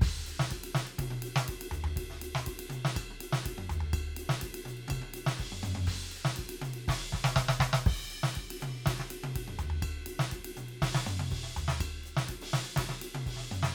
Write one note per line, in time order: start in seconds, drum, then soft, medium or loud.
0.02 kick loud
0.02 hi-hat pedal medium
0.02 crash loud
0.27 hi-hat pedal medium
0.27 ride medium
0.40 snare loud
0.51 kick medium
0.51 hi-hat pedal medium
0.51 ride loud
0.64 ride loud
0.75 snare loud
0.75 hi-hat pedal medium
0.88 ride medium
0.99 kick medium
0.99 hi-hat pedal medium
0.99 high tom loud
0.99 ride loud
1.11 high tom loud
1.23 hi-hat pedal medium
1.23 ride loud
1.36 snare loud
1.49 kick medium
1.49 hi-hat pedal medium
1.49 ride loud
1.62 ride loud
1.72 floor tom loud
1.72 hi-hat pedal medium
1.85 floor tom loud
1.97 kick medium
1.97 hi-hat pedal medium
1.97 ride loud
2.11 snare soft
2.14 snare soft
2.22 hi-hat pedal medium
2.22 ride loud
2.35 snare loud
2.47 kick medium
2.47 hi-hat pedal medium
2.47 ride loud
2.60 ride loud
2.70 hi-hat pedal medium
2.70 high tom loud
2.85 snare loud
2.97 kick medium
2.97 hi-hat pedal medium
2.97 ride bell loud
3.11 cross-stick soft
3.21 hi-hat pedal medium
3.21 ride loud
3.33 snare loud
3.46 kick medium
3.46 hi-hat pedal medium
3.46 ride loud
3.59 mid tom loud
3.70 floor tom loud
3.70 hi-hat pedal medium
3.81 floor tom medium
3.94 kick medium
3.94 hi-hat pedal medium
3.94 ride bell loud
4.17 hi-hat pedal medium
4.17 ride loud
4.30 snare loud
4.42 kick medium
4.42 hi-hat pedal medium
4.42 ride loud
4.55 ride loud
4.66 hi-hat pedal medium
4.66 high tom loud
4.78 ride soft
4.89 kick medium
4.89 high tom loud
4.89 ride bell loud
4.93 hi-hat pedal medium
5.02 high tom medium
5.14 hi-hat pedal medium
5.14 ride loud
5.27 snare loud
5.40 kick medium
5.40 hi-hat pedal medium
5.40 ride loud
5.53 mid tom medium
5.64 hi-hat pedal medium
5.64 mid tom loud
5.76 mid tom loud
5.87 kick medium
5.87 hi-hat pedal medium
5.87 crash loud
6.12 hi-hat pedal medium
6.12 ride bell medium
6.25 snare loud
6.37 kick medium
6.37 hi-hat pedal medium
6.37 ride loud
6.50 ride loud
6.62 hi-hat pedal medium
6.62 high tom loud
6.74 ride medium
6.89 kick medium
6.89 snare loud
6.89 hi-hat pedal medium
6.89 ride loud
6.98 snare soft
7.13 kick medium
7.13 snare medium
7.13 hi-hat pedal soft
7.25 snare loud
7.36 kick medium
7.36 snare loud
7.36 hi-hat pedal medium
7.49 snare loud
7.60 kick medium
7.60 snare loud
7.60 hi-hat pedal medium
7.74 snare loud
7.86 kick loud
7.86 crash loud
8.10 hi-hat pedal medium
8.10 ride medium
8.24 snare loud
8.34 kick medium
8.34 hi-hat pedal soft
8.34 ride medium
8.51 ride loud
8.61 hi-hat pedal medium
8.61 high tom loud
8.75 ride soft
8.86 kick medium
8.86 snare loud
8.86 hi-hat pedal medium
8.86 ride loud
9.00 snare medium
9.10 hi-hat pedal medium
9.10 ride loud
9.24 high tom loud
9.34 kick medium
9.34 hi-hat pedal soft
9.34 ride loud
9.48 mid tom medium
9.59 floor tom loud
9.59 hi-hat pedal medium
9.71 floor tom medium
9.83 kick medium
9.83 hi-hat pedal medium
9.83 ride bell loud
10.07 hi-hat pedal medium
10.07 ride loud
10.20 snare loud
10.32 kick medium
10.32 hi-hat pedal medium
10.32 ride loud
10.45 ride loud
10.57 hi-hat pedal medium
10.57 high tom loud
10.69 ride medium
10.82 kick medium
10.82 snare loud
10.82 hi-hat pedal medium
10.82 ride loud
10.95 snare loud
11.06 hi-hat pedal medium
11.06 mid tom loud
11.20 high tom loud
11.31 kick medium
11.31 hi-hat pedal medium
11.31 ride loud
11.44 snare medium
11.51 snare soft
11.57 floor tom loud
11.57 hi-hat pedal medium
11.68 snare loud
11.81 kick medium
11.81 hi-hat pedal medium
11.81 ride bell loud
12.04 hi-hat pedal medium
12.04 ride soft
12.17 snare loud
12.29 kick medium
12.29 hi-hat pedal medium
12.29 ride loud
12.42 ride loud
12.54 snare loud
12.54 hi-hat pedal medium
12.65 ride medium
12.77 kick medium
12.77 snare loud
12.77 hi-hat pedal medium
12.77 ride loud
12.90 snare medium
13.02 hi-hat pedal medium
13.02 ride loud
13.15 high tom loud
13.27 kick medium
13.27 hi-hat pedal medium
13.27 ride loud
13.37 snare medium
13.41 snare soft
13.52 hi-hat pedal medium
13.52 mid tom loud
13.63 snare loud